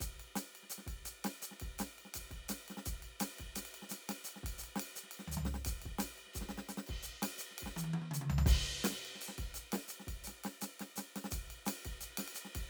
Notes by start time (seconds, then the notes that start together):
0.01 kick, hi-hat pedal, ride
0.20 ride
0.36 snare, hi-hat pedal, ride
0.56 ride
0.63 snare
0.70 hi-hat pedal, ride
0.78 snare
0.87 kick, ride
1.06 hi-hat pedal, ride
1.25 snare, ride
1.43 hi-hat pedal, ride
1.52 snare
1.61 kick, ride
1.79 snare, hi-hat pedal, ride
1.99 ride
2.06 snare
2.15 kick, hi-hat pedal, ride
2.31 kick, ride
2.49 snare, hi-hat pedal, ride
2.69 snare, ride
2.78 snare
2.86 kick, hi-hat pedal, ride
3.03 ride
3.20 snare, hi-hat pedal, ride
3.39 kick, ride
3.56 snare, hi-hat pedal, ride
3.66 ride
3.75 ride
3.83 snare
3.90 snare, hi-hat pedal, ride
4.10 snare, ride
4.25 hi-hat pedal
4.29 ride
4.36 snare
4.44 kick, ride
4.59 hi-hat pedal
4.64 ride
4.76 snare, ride
4.96 hi-hat pedal, ride
5.04 snare
5.12 ride
5.20 snare
5.28 floor tom
5.32 hi-hat pedal
5.37 floor tom
5.46 snare
5.55 snare
5.66 kick, hi-hat pedal, ride
5.82 kick, ride
5.99 snare, hi-hat pedal, ride
6.19 ride
6.27 snare
6.34 kick, hi-hat pedal, ride
6.42 snare
6.49 snare
6.58 snare
6.69 snare, hi-hat pedal
6.78 snare
6.87 kick, ride
7.03 hi-hat pedal, ride
7.23 snare, ride
7.39 hi-hat pedal, ride
7.51 snare
7.59 ride
7.63 kick, snare
7.77 hi-hat pedal, high tom
7.84 high tom
7.94 high tom
8.02 high tom
8.12 hi-hat pedal, mid tom
8.22 mid tom
8.30 floor tom
8.39 floor tom
8.47 kick, hi-hat pedal, ride
8.85 snare, hi-hat pedal, ride
8.91 snare
9.06 ride
9.16 snare
9.21 hi-hat pedal, ride
9.29 snare
9.39 kick, ride
9.55 hi-hat pedal, ride
9.73 snare, ride
9.89 hi-hat pedal, ride
10.00 snare
10.08 kick, ride
10.24 snare, hi-hat pedal, ride
10.44 snare, ride
10.62 snare, hi-hat pedal, ride
10.80 snare, ride
10.96 snare, hi-hat pedal, ride
11.16 snare, ride
11.25 snare
11.31 kick, hi-hat pedal, ride
11.51 ride
11.66 snare, hi-hat pedal, ride
11.85 kick, ride
12.01 hi-hat pedal, ride
12.18 snare, ride
12.28 ride
12.35 hi-hat pedal, ride
12.45 snare
12.56 kick, ride